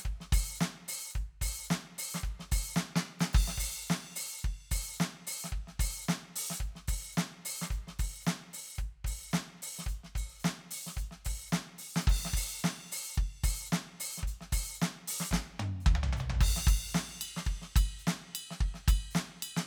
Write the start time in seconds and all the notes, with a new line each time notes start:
0.01 hi-hat pedal
0.06 kick, closed hi-hat
0.21 snare
0.33 open hi-hat, kick
0.58 snare, hi-hat pedal
0.89 open hi-hat
1.11 closed hi-hat, hi-hat pedal
1.16 kick
1.42 open hi-hat, kick
1.67 hi-hat pedal
1.71 snare
1.99 open hi-hat
2.15 snare
2.20 hi-hat pedal
2.24 kick, closed hi-hat
2.40 snare
2.52 open hi-hat, kick
2.74 snare, hi-hat pedal
2.96 snare
3.20 snare, hi-hat pedal
3.34 kick, crash
3.48 snare
3.58 open hi-hat, kick
3.87 snare, hi-hat pedal
4.16 open hi-hat
4.42 kick, hi-hat pedal
4.72 open hi-hat, kick
4.97 snare, hi-hat pedal
5.28 open hi-hat
5.45 snare, hi-hat pedal
5.53 kick
5.68 snare
5.80 open hi-hat, kick
6.05 hi-hat pedal
6.09 snare
6.36 open hi-hat
6.51 snare
6.58 closed hi-hat, kick, hi-hat pedal
6.76 snare
6.88 open hi-hat, kick
7.13 hi-hat pedal
7.18 snare
7.46 open hi-hat
7.62 snare, hi-hat pedal
7.71 closed hi-hat, kick
7.88 snare
8.00 open hi-hat, kick
8.22 hi-hat pedal
8.27 snare
8.54 open hi-hat
8.76 closed hi-hat, kick, hi-hat pedal
9.05 open hi-hat, kick
9.31 snare, hi-hat pedal
9.63 open hi-hat
9.79 snare
9.84 kick, hi-hat pedal
9.89 closed hi-hat
10.04 snare
10.16 open hi-hat, kick
10.41 hi-hat pedal
10.45 snare
10.71 open hi-hat
10.87 snare
10.94 closed hi-hat, kick, hi-hat pedal
11.12 snare
11.25 open hi-hat, kick
11.48 hi-hat pedal
11.53 snare
11.79 open hi-hat
11.97 snare
12.02 hi-hat pedal
12.08 kick, crash
12.26 snare
12.34 open hi-hat, kick
12.61 snare, hi-hat pedal
12.93 open hi-hat
13.15 kick, hi-hat pedal
13.44 open hi-hat, kick
13.68 hi-hat pedal
13.73 snare
14.01 open hi-hat
14.18 snare, hi-hat pedal
14.24 kick
14.28 closed hi-hat
14.41 snare
14.53 open hi-hat, kick
14.76 hi-hat pedal
14.82 snare
15.08 open hi-hat
15.21 snare
15.28 kick, snare, hi-hat pedal
15.33 snare
15.60 high tom
15.81 hi-hat pedal
15.87 kick, mid tom
15.96 mid tom
16.04 floor tom
16.13 floor tom
16.17 floor tom, hi-hat pedal
16.30 floor tom
16.41 kick, crash
16.57 snare
16.68 kick, ride, floor tom
16.89 hi-hat pedal
16.95 snare
17.22 ride bell
17.37 snare
17.46 kick, ride
17.62 snare
17.76 kick, ride bell
18.00 hi-hat pedal
18.08 snare
18.36 ride bell
18.51 snare
18.61 kick
18.75 snare
18.89 kick, ride bell
19.11 hi-hat pedal
19.16 snare
19.43 ride bell
19.57 snare